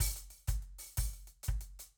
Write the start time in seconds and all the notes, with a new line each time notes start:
0.00 open hi-hat, kick
0.16 open hi-hat
0.31 open hi-hat
0.48 open hi-hat, kick
0.62 open hi-hat
0.79 open hi-hat
0.97 kick, open hi-hat
1.14 open hi-hat
1.27 open hi-hat
1.43 open hi-hat
1.48 kick
1.61 open hi-hat
1.79 open hi-hat